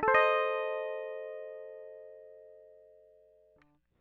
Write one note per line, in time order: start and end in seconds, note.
0.00 0.07 D4
0.00 3.64 A4
0.09 3.54 C5
0.15 3.58 D#5